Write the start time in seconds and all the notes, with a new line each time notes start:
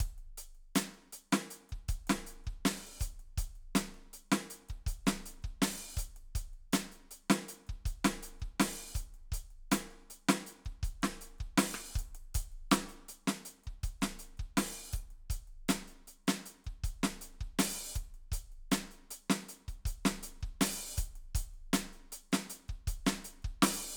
0.00 kick, closed hi-hat
0.18 closed hi-hat
0.38 closed hi-hat
0.55 closed hi-hat
0.75 closed hi-hat, snare
0.94 closed hi-hat
1.12 closed hi-hat
1.32 snare, closed hi-hat
1.50 closed hi-hat
1.69 kick, closed hi-hat
1.88 closed hi-hat, kick
2.07 snare, closed hi-hat
2.26 closed hi-hat
2.44 kick, closed hi-hat
2.65 open hi-hat, snare
3.00 closed hi-hat, kick, hi-hat pedal
3.19 closed hi-hat
3.38 closed hi-hat, kick
3.55 closed hi-hat
3.75 closed hi-hat, snare
3.94 closed hi-hat
4.13 closed hi-hat
4.32 snare, closed hi-hat
4.50 closed hi-hat
4.69 kick, closed hi-hat
4.86 closed hi-hat, kick
5.06 snare, closed hi-hat
5.26 closed hi-hat
5.43 kick, closed hi-hat
5.62 open hi-hat, snare
5.97 closed hi-hat, kick, hi-hat pedal
6.16 closed hi-hat
6.35 closed hi-hat, kick
6.53 closed hi-hat
6.73 closed hi-hat, snare
6.92 closed hi-hat
7.11 closed hi-hat
7.30 snare, closed hi-hat
7.48 closed hi-hat
7.67 kick, closed hi-hat
7.85 closed hi-hat, kick
8.05 closed hi-hat, snare
8.23 closed hi-hat
8.40 kick, closed hi-hat
8.60 open hi-hat, snare
8.94 closed hi-hat, kick, hi-hat pedal
9.14 closed hi-hat
9.32 closed hi-hat, kick
9.50 closed hi-hat
9.71 closed hi-hat, snare
9.90 closed hi-hat
10.10 closed hi-hat
10.29 snare, closed hi-hat
10.46 closed hi-hat
10.65 kick, closed hi-hat
10.83 closed hi-hat, kick
11.02 snare, closed hi-hat
11.21 closed hi-hat
11.38 kick, closed hi-hat
11.58 open hi-hat, snare
11.74 cross-stick
11.94 kick, hi-hat pedal
11.99 closed hi-hat
12.15 closed hi-hat
12.34 closed hi-hat, kick
12.52 closed hi-hat
12.71 closed hi-hat, snare
12.89 closed hi-hat
13.08 closed hi-hat
13.27 snare, closed hi-hat
13.45 closed hi-hat
13.64 kick, closed hi-hat
13.83 closed hi-hat, kick
14.02 snare, closed hi-hat
14.19 closed hi-hat
14.37 kick, closed hi-hat
14.57 open hi-hat, snare
14.93 kick, hi-hat pedal, open hi-hat
15.10 closed hi-hat
15.30 closed hi-hat, kick
15.47 closed hi-hat
15.68 closed hi-hat, snare
15.87 closed hi-hat
16.07 closed hi-hat
16.27 closed hi-hat, snare
16.45 closed hi-hat, cross-stick
16.64 kick, closed hi-hat
16.84 closed hi-hat, kick
17.03 closed hi-hat, snare
17.21 closed hi-hat
17.40 kick, closed hi-hat
17.59 open hi-hat, snare
17.94 kick, closed hi-hat, hi-hat pedal
18.14 closed hi-hat
18.32 closed hi-hat, kick
18.52 closed hi-hat
18.71 closed hi-hat, snare
18.91 closed hi-hat
19.11 closed hi-hat
19.30 closed hi-hat, snare
19.49 closed hi-hat
19.68 closed hi-hat, kick
19.85 closed hi-hat, kick
20.05 snare, closed hi-hat
20.23 closed hi-hat
20.41 kick, closed hi-hat
20.61 open hi-hat, snare
20.96 closed hi-hat, kick, hi-hat pedal
21.15 closed hi-hat
21.35 closed hi-hat, kick
21.54 closed hi-hat
21.73 closed hi-hat, snare
21.93 closed hi-hat
22.12 closed hi-hat
22.32 closed hi-hat, snare
22.50 closed hi-hat
22.68 kick, closed hi-hat
22.87 closed hi-hat, kick
23.06 snare, closed hi-hat
23.12 snare
23.24 closed hi-hat
23.42 kick, closed hi-hat
23.62 open hi-hat, snare